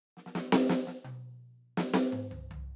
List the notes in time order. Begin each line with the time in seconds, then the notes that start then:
0.17 snare
0.26 snare
0.35 snare
0.52 snare
0.69 snare
0.87 snare
1.04 high tom
1.77 snare
1.94 snare
2.12 mid tom
2.31 floor tom
2.51 floor tom